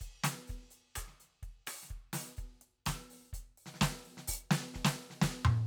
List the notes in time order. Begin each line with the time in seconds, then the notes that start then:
0.01 closed hi-hat, kick
0.24 open hi-hat, snare
0.37 snare
0.47 open hi-hat, kick, snare
0.71 open hi-hat
0.96 open hi-hat, kick, cross-stick
1.08 snare
1.20 open hi-hat, snare
1.27 snare
1.29 snare
1.43 kick, closed hi-hat
1.67 open hi-hat, cross-stick
1.83 snare
1.90 kick, closed hi-hat
2.13 open hi-hat, snare
2.26 snare
2.37 closed hi-hat, kick
2.42 snare
2.49 snare
2.61 open hi-hat
2.86 open hi-hat, kick, snare
3.10 open hi-hat
3.33 closed hi-hat, kick
3.58 open hi-hat
3.66 snare
3.74 snare
3.81 kick, snare
3.92 snare
4.05 open hi-hat
4.17 snare
4.28 open hi-hat, kick
4.51 snare
4.61 snare
4.74 kick, snare
4.85 snare
5.10 snare
5.22 kick, snare, hi-hat pedal
5.35 snare
5.45 mid tom